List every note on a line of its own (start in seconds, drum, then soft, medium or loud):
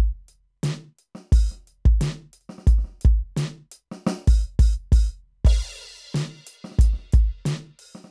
0.29 closed hi-hat medium
0.64 closed hi-hat loud
0.64 snare loud
0.99 open hi-hat soft
1.16 snare soft
1.33 open hi-hat loud
1.33 kick loud
1.52 snare soft
1.68 closed hi-hat soft
1.86 kick loud
2.02 closed hi-hat loud
2.02 snare loud
2.34 closed hi-hat medium
2.42 closed hi-hat soft
2.50 snare soft
2.59 snare soft
2.68 closed hi-hat medium
2.68 kick loud
2.68 snare soft
2.79 snare soft
2.79 hi-hat pedal soft
2.85 snare soft
2.89 snare soft
2.93 snare soft
3.02 closed hi-hat medium
3.02 kick loud
3.37 closed hi-hat loud
3.37 snare loud
3.72 closed hi-hat loud
3.92 snare medium
4.07 snare loud
4.28 open hi-hat loud
4.28 kick loud
4.41 hi-hat pedal soft
4.60 open hi-hat loud
4.60 kick loud
4.74 hi-hat pedal medium
4.93 open hi-hat loud
4.93 kick loud
5.06 hi-hat pedal soft
5.45 open hi-hat loud
5.45 kick loud
5.45 crash loud
5.78 open hi-hat medium
6.15 open hi-hat loud
6.15 snare loud
6.47 closed hi-hat loud
6.54 closed hi-hat soft
6.65 snare soft
6.72 snare soft
6.79 closed hi-hat loud
6.79 kick loud
6.85 snare soft
6.94 snare soft
7.00 snare soft
7.13 closed hi-hat medium
7.13 kick loud
7.46 closed hi-hat loud
7.46 snare loud
7.80 open hi-hat medium
7.86 open hi-hat soft
7.96 snare soft
8.05 snare soft